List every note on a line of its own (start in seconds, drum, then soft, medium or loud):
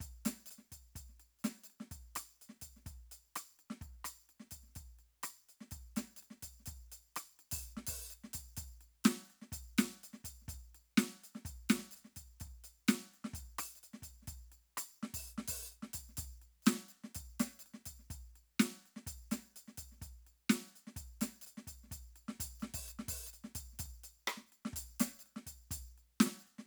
0.01 kick soft
0.01 percussion medium
0.26 snare medium
0.26 percussion loud
0.47 percussion medium
0.51 percussion soft
0.59 snare soft
0.72 kick soft
0.72 percussion medium
0.96 kick soft
0.96 percussion medium
1.10 snare soft
1.20 percussion soft
1.39 percussion soft
1.45 snare medium
1.45 percussion medium
1.64 percussion medium
1.71 percussion soft
1.81 snare soft
1.92 kick soft
1.92 percussion medium
2.16 cross-stick medium
2.16 percussion medium
2.42 percussion soft
2.50 snare soft
2.62 kick soft
2.62 percussion medium
2.77 snare soft
2.83 snare soft
2.85 kick soft
2.85 snare soft
2.85 percussion soft
3.12 percussion soft
3.36 cross-stick medium
3.36 percussion medium
3.60 percussion soft
3.71 snare soft
3.82 kick soft
3.82 percussion soft
4.05 cross-stick medium
4.05 percussion medium
4.30 percussion soft
4.40 snare soft
4.52 kick soft
4.52 percussion medium
4.63 snare soft
4.67 snare soft
4.69 snare soft
4.76 kick soft
4.76 percussion medium
4.99 percussion soft
5.24 cross-stick medium
5.24 percussion medium
5.49 percussion soft
5.61 snare soft
5.72 kick soft
5.72 percussion medium
5.97 snare medium
5.97 percussion medium
6.17 percussion medium
6.23 percussion soft
6.31 snare soft
6.43 kick soft
6.43 percussion medium
6.60 snare soft
6.67 kick soft
6.67 percussion medium
6.92 percussion medium
7.17 cross-stick medium
7.17 percussion medium
7.40 percussion soft
7.52 kick soft
7.52 percussion loud
7.71 percussion soft
7.77 snare soft
7.87 kick soft
7.87 percussion loud
8.11 percussion medium
8.24 snare soft
8.34 kick soft
8.34 percussion medium
8.57 kick soft
8.57 percussion medium
8.64 kick soft
8.81 percussion soft
9.05 snare loud
9.05 percussion medium
9.24 percussion soft
9.31 percussion soft
9.42 snare soft
9.53 kick soft
9.53 percussion medium
9.79 snare medium
9.79 percussion loud
10.04 percussion soft
10.14 snare soft
10.25 kick soft
10.25 percussion medium
10.42 snare soft
10.49 kick soft
10.49 percussion medium
10.54 kick soft
10.75 percussion soft
10.98 snare loud
10.98 percussion medium
11.24 percussion soft
11.36 snare soft
11.46 kick soft
11.46 percussion medium
11.70 snare loud
11.70 percussion loud
11.79 snare soft
11.92 percussion medium
11.97 percussion soft
12.05 snare soft
12.13 snare soft
12.13 percussion medium
12.17 kick soft
12.41 kick soft
12.41 percussion medium
12.47 kick soft
12.64 percussion soft
12.89 snare loud
12.89 percussion loud
13.14 percussion soft
13.25 snare medium
13.34 kick soft
13.34 percussion medium
13.40 kick soft
13.59 cross-stick medium
13.59 percussion loud
13.76 percussion soft
13.84 percussion soft
13.94 snare soft
14.03 kick soft
14.03 percussion medium
14.23 snare soft
14.28 kick soft
14.28 percussion medium
14.52 percussion soft
14.78 cross-stick medium
14.78 percussion loud
15.03 snare medium
15.14 kick soft
15.14 percussion medium
15.29 percussion soft
15.38 snare medium
15.48 kick soft
15.48 percussion loud
15.67 percussion soft
15.72 percussion soft
15.83 snare soft
15.94 kick soft
15.94 percussion medium
16.09 snare soft
16.18 kick soft
16.18 percussion medium
16.25 kick soft
16.42 percussion soft
16.63 percussion soft
16.67 snare loud
16.67 percussion loud
16.75 snare soft
16.89 percussion soft
17.04 snare soft
17.15 kick soft
17.15 percussion medium
17.40 snare medium
17.40 percussion loud
17.60 percussion medium
17.67 percussion soft
17.74 snare soft
17.86 kick soft
17.86 percussion medium
18.00 snare soft
18.11 kick soft
18.11 percussion medium
18.36 percussion soft
18.60 snare loud
18.60 percussion loud
18.86 percussion soft
18.97 snare soft
19.07 kick soft
19.07 percussion medium
19.32 snare medium
19.32 percussion medium
19.57 percussion soft
19.68 snare soft
19.78 kick soft
19.78 percussion medium
19.92 snare soft
19.98 kick soft
19.98 snare soft
20.03 snare soft
20.03 percussion soft
20.27 percussion soft
20.50 snare loud
20.50 percussion medium
20.67 percussion soft
20.76 percussion soft
20.88 snare soft
20.97 kick soft
20.97 percussion medium
21.22 snare medium
21.22 percussion medium
21.42 percussion medium
21.47 percussion soft
21.58 snare soft
21.68 kick soft
21.68 percussion medium
21.84 snare soft
21.88 snare soft
21.92 kick soft
21.92 snare soft
21.92 percussion medium
22.16 percussion soft
22.29 snare soft
22.40 kick soft
22.40 percussion loud
22.46 kick soft
22.61 snare medium
22.61 percussion soft
22.75 kick soft
22.75 percussion medium
22.80 kick soft
22.89 percussion medium
23.00 snare soft
23.09 kick soft
23.09 percussion loud
23.14 kick soft
23.27 percussion medium
23.34 percussion soft
23.45 snare soft
23.56 kick soft
23.56 percussion medium
23.73 snare soft
23.80 kick soft
23.80 percussion medium
23.86 kick soft
24.04 percussion medium
24.28 cross-stick medium
24.28 high tom loud
24.28 percussion medium
24.38 snare soft
24.47 percussion soft
24.53 percussion soft
24.66 snare medium
24.74 kick soft
24.74 percussion medium
25.00 snare medium
25.00 percussion loud
25.20 percussion soft
25.26 percussion soft
25.37 snare soft
25.47 kick soft
25.47 percussion medium
25.71 kick soft
25.71 percussion medium
25.77 kick soft
25.98 percussion soft
26.21 snare loud
26.21 percussion loud
26.27 snare soft
26.40 percussion soft
26.47 percussion soft
26.59 snare soft